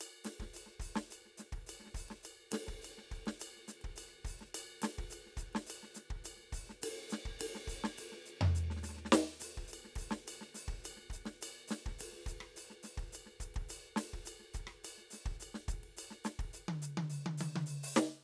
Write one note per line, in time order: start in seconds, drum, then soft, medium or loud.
0.00 hi-hat pedal medium
0.00 ride bell medium
0.24 snare soft
0.24 hi-hat pedal medium
0.24 ride medium
0.40 kick soft
0.40 snare soft
0.53 hi-hat pedal medium
0.53 ride bell soft
0.66 snare soft
0.79 kick soft
0.79 hi-hat pedal medium
0.79 ride soft
0.95 snare medium
0.95 ride soft
1.10 hi-hat pedal medium
1.10 ride bell medium
1.25 snare soft
1.37 snare soft
1.37 hi-hat pedal medium
1.37 ride soft
1.52 kick soft
1.52 ride soft
1.66 hi-hat pedal medium
1.66 ride bell medium
1.80 snare soft
1.84 snare soft
1.86 snare soft
1.94 kick soft
1.94 hi-hat pedal medium
1.94 ride soft
2.08 snare soft
2.08 ride soft
2.23 hi-hat pedal medium
2.23 ride bell medium
2.51 snare medium
2.51 hi-hat pedal medium
2.51 ride loud
2.67 kick soft
2.67 snare soft
2.81 hi-hat pedal soft
2.81 ride bell medium
2.98 snare soft
3.11 kick soft
3.11 hi-hat pedal soft
3.11 ride soft
3.26 snare medium
3.26 ride soft
3.39 hi-hat pedal medium
3.39 ride bell medium
3.56 snare soft
3.68 snare soft
3.68 hi-hat pedal medium
3.68 ride soft
3.81 kick soft
3.81 ride soft
3.96 hi-hat pedal medium
3.96 ride bell medium
4.08 cross-stick soft
4.24 kick soft
4.24 hi-hat pedal medium
4.24 ride soft
4.39 snare soft
4.39 ride soft
4.54 hi-hat pedal medium
4.54 ride bell medium
4.82 snare medium
4.82 hi-hat pedal medium
4.82 ride medium
4.98 kick soft
4.98 snare soft
5.10 hi-hat pedal medium
5.10 ride bell medium
5.26 snare soft
5.37 kick soft
5.37 hi-hat pedal medium
5.37 ride soft
5.53 snare medium
5.53 ride soft
5.66 hi-hat pedal medium
5.66 ride bell medium
5.83 snare soft
5.94 snare soft
5.94 hi-hat pedal medium
5.94 ride soft
6.10 kick soft
6.10 ride soft
6.24 hi-hat pedal medium
6.24 ride bell medium
6.36 snare soft
6.39 snare soft
6.42 snare soft
6.52 kick soft
6.52 hi-hat pedal medium
6.52 ride soft
6.67 snare soft
6.67 ride soft
6.82 hi-hat pedal medium
6.82 ride loud
7.09 snare medium
7.09 hi-hat pedal medium
7.09 ride soft
7.25 kick soft
7.25 snare soft
7.39 hi-hat pedal medium
7.39 ride loud
7.55 snare soft
7.67 kick soft
7.67 hi-hat pedal medium
7.67 ride soft
7.84 snare medium
7.97 hi-hat pedal medium
7.97 ride medium
8.12 snare soft
8.25 snare soft
8.25 hi-hat pedal medium
8.41 floor tom loud
8.55 hi-hat pedal medium
8.70 snare soft
8.76 snare soft
8.83 snare soft
8.83 hi-hat pedal medium
8.89 snare soft
8.93 snare soft
8.97 snare soft
9.05 snare soft
9.12 snare loud
9.12 hi-hat pedal medium
9.40 hi-hat pedal medium
9.40 ride medium
9.57 kick soft
9.68 hi-hat pedal medium
9.73 ride bell medium
9.84 snare soft
9.95 kick soft
9.95 hi-hat pedal medium
9.95 ride medium
10.10 snare medium
10.10 ride soft
10.27 hi-hat pedal medium
10.27 ride bell medium
10.41 snare soft
10.54 snare soft
10.54 hi-hat pedal medium
10.54 ride soft
10.68 kick soft
10.68 ride soft
10.84 hi-hat pedal medium
10.84 ride bell medium
10.96 snare soft
11.10 kick soft
11.10 hi-hat pedal medium
11.10 ride soft
11.25 snare soft
11.25 ride soft
11.41 hi-hat pedal medium
11.41 ride bell medium
11.67 snare medium
11.67 hi-hat pedal medium
11.67 ride medium
11.86 kick soft
11.86 snare soft
11.98 hi-hat pedal medium
11.98 ride medium
12.12 snare soft
12.26 kick soft
12.26 hi-hat pedal medium
12.26 ride soft
12.40 cross-stick medium
12.40 ride soft
12.56 hi-hat pedal medium
12.56 ride bell medium
12.70 snare soft
12.83 snare soft
12.83 hi-hat pedal medium
12.83 ride soft
12.97 kick soft
12.97 ride soft
13.12 hi-hat pedal medium
13.12 ride bell medium
13.26 snare soft
13.40 kick soft
13.40 hi-hat pedal medium
13.40 ride soft
13.54 kick medium
13.54 ride soft
13.69 hi-hat pedal medium
13.69 ride bell medium
13.96 snare medium
13.96 hi-hat pedal medium
13.96 ride medium
14.10 kick soft
14.10 ride soft
14.25 hi-hat pedal medium
14.25 ride bell medium
14.39 snare soft
14.53 kick soft
14.53 hi-hat pedal medium
14.53 ride soft
14.67 cross-stick medium
14.67 ride soft
14.84 hi-hat pedal medium
14.84 ride bell medium
14.97 snare soft
15.10 snare soft
15.10 hi-hat pedal medium
15.10 ride soft
15.25 kick medium
15.25 ride soft
15.40 hi-hat pedal medium
15.40 ride bell medium
15.54 snare soft
15.68 kick medium
15.68 hi-hat pedal medium
15.68 ride soft
15.83 ride soft
15.97 hi-hat pedal medium
15.97 ride bell medium
16.10 snare soft
16.24 snare medium
16.24 hi-hat pedal medium
16.24 ride soft
16.39 kick medium
16.39 ride soft
16.53 hi-hat pedal medium
16.53 ride bell soft
16.68 open hi-hat soft
16.68 high tom loud
16.82 hi-hat pedal medium
16.97 open hi-hat soft
16.97 high tom loud
17.10 hi-hat pedal medium
17.26 high tom medium
17.37 hi-hat pedal medium
17.37 high tom medium
17.55 high tom loud
17.66 hi-hat pedal medium
17.83 open hi-hat medium
17.96 snare loud
17.96 hi-hat pedal medium